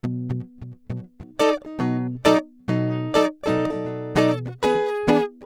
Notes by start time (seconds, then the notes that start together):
0.05 B2 F#3
0.31 B2 F#3
0.63 B2 F#3
0.91 B2 F#3
1.21 B2 F#3
1.40 D#4 A4 D5
1.67 D#4
1.80 B2 F#3 D#4
2.26 B2 F#3 D#4 A4 D5
2.69 B2 F#3 D#4
3.15 F#3 D#4 A4 D5
3.45 A4 D5
3.49 B2 F#3 D#4
3.72 D#4 A4
3.76 B2 F#3
3.86 B2 F#3 D#4
4.17 B2 F#3 D#4 A4 D5
4.63 B3 G#4 B4
4.76 E3
5.09 E3 B3 D4 G#4